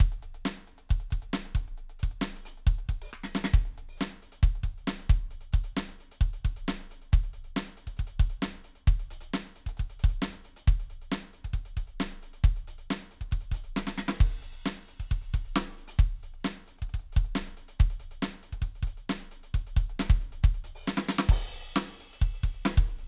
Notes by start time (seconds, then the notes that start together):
0.01 kick, closed hi-hat
0.13 closed hi-hat
0.23 closed hi-hat
0.35 closed hi-hat
0.46 snare
0.58 closed hi-hat
0.68 closed hi-hat
0.79 closed hi-hat
0.90 kick, closed hi-hat
1.01 closed hi-hat
1.11 kick, closed hi-hat
1.23 closed hi-hat
1.34 snare
1.46 closed hi-hat
1.56 kick, closed hi-hat
1.69 closed hi-hat
1.79 closed hi-hat
1.90 closed hi-hat
2.00 closed hi-hat, kick
2.12 closed hi-hat
2.22 snare
2.36 closed hi-hat
2.46 closed hi-hat
2.58 closed hi-hat
2.67 kick, closed hi-hat
2.79 closed hi-hat
2.90 kick, closed hi-hat
3.03 open hi-hat
3.10 hi-hat pedal
3.14 cross-stick
3.24 snare
3.36 snare
3.45 snare
3.54 kick, closed hi-hat
3.66 closed hi-hat
3.79 closed hi-hat
3.90 open hi-hat
3.98 snare, hi-hat pedal
4.12 closed hi-hat
4.23 closed hi-hat
4.33 closed hi-hat
4.44 kick, closed hi-hat
4.56 closed hi-hat
4.64 kick
4.79 closed hi-hat
4.88 snare
5.00 closed hi-hat
5.10 closed hi-hat, kick
5.31 closed hi-hat
5.53 closed hi-hat, kick
5.65 closed hi-hat
5.77 snare
5.90 closed hi-hat
6.01 closed hi-hat
6.12 closed hi-hat
6.22 kick, closed hi-hat
6.34 closed hi-hat
6.45 kick, closed hi-hat
6.57 closed hi-hat
6.69 snare
6.81 closed hi-hat
6.92 closed hi-hat
7.02 closed hi-hat
7.13 kick, closed hi-hat
7.24 closed hi-hat
7.34 closed hi-hat
7.45 closed hi-hat
7.57 snare
7.67 closed hi-hat
7.78 closed hi-hat
7.88 kick
7.97 closed hi-hat, kick
8.08 closed hi-hat
8.20 closed hi-hat, kick
8.43 snare
8.54 closed hi-hat
8.65 closed hi-hat
8.76 closed hi-hat
8.88 kick, closed hi-hat
9.00 closed hi-hat
9.11 closed hi-hat
9.21 closed hi-hat
9.34 snare
9.46 closed hi-hat
9.67 kick, closed hi-hat
9.78 kick, closed hi-hat
9.90 closed hi-hat
10.00 closed hi-hat
10.05 kick
10.10 closed hi-hat
10.23 snare
10.33 closed hi-hat
10.46 closed hi-hat
10.57 closed hi-hat
10.68 closed hi-hat, kick
10.80 closed hi-hat
10.91 closed hi-hat
11.02 closed hi-hat
11.12 snare
11.22 closed hi-hat
11.34 closed hi-hat
11.45 kick, closed hi-hat
11.54 closed hi-hat, kick
11.66 closed hi-hat
11.78 closed hi-hat, kick
11.88 closed hi-hat
12.01 snare
12.12 closed hi-hat
12.24 closed hi-hat
12.34 closed hi-hat
12.45 kick, closed hi-hat
12.57 closed hi-hat
12.68 closed hi-hat
12.79 closed hi-hat
12.91 snare
13.02 closed hi-hat
13.12 closed hi-hat
13.22 kick, closed hi-hat
13.32 closed hi-hat, kick
13.42 closed hi-hat
13.52 closed hi-hat, kick
13.65 closed hi-hat
13.77 snare
13.88 snare
13.99 snare
14.09 snare
14.20 kick, crash
14.32 closed hi-hat
14.43 closed hi-hat
14.53 closed hi-hat
14.64 kick, snare
14.77 closed hi-hat
14.89 closed hi-hat
15.01 closed hi-hat, kick
15.11 closed hi-hat, kick
15.22 closed hi-hat
15.34 closed hi-hat, kick
15.45 closed hi-hat
15.57 snare
15.69 closed hi-hat
15.79 closed hi-hat
15.89 closed hi-hat
16.00 kick, closed hi-hat
16.12 closed hi-hat
16.24 closed hi-hat
16.35 closed hi-hat
16.45 snare
16.57 closed hi-hat
16.68 closed hi-hat
16.79 kick, closed hi-hat
16.90 closed hi-hat
16.95 kick
17.00 closed hi-hat
17.13 closed hi-hat, kick
17.25 closed hi-hat
17.36 snare
17.47 closed hi-hat
17.58 closed hi-hat
17.69 closed hi-hat
17.80 kick, closed hi-hat
17.91 closed hi-hat
18.00 closed hi-hat
18.12 closed hi-hat
18.23 snare
18.33 closed hi-hat
18.44 closed hi-hat
18.53 kick, closed hi-hat
18.63 closed hi-hat, kick
18.76 closed hi-hat
18.83 kick
18.87 closed hi-hat
18.98 closed hi-hat
19.10 snare
19.21 closed hi-hat
19.32 closed hi-hat
19.44 closed hi-hat
19.55 closed hi-hat, kick
19.67 closed hi-hat
19.77 closed hi-hat, kick
19.90 closed hi-hat
20.00 snare
20.11 closed hi-hat, kick
20.22 closed hi-hat
20.33 closed hi-hat
20.44 kick, closed hi-hat
20.55 closed hi-hat
20.65 closed hi-hat
20.76 open hi-hat
20.87 snare, hi-hat pedal
20.98 snare
21.09 snare
21.19 snare
21.30 kick, crash
21.43 closed hi-hat
21.52 closed hi-hat
21.65 closed hi-hat
21.77 snare
21.89 closed hi-hat
22.01 closed hi-hat
22.14 closed hi-hat
22.22 closed hi-hat, kick
22.35 closed hi-hat
22.44 closed hi-hat, kick
22.55 closed hi-hat
22.66 snare
22.78 closed hi-hat, kick
22.89 closed hi-hat
22.99 closed hi-hat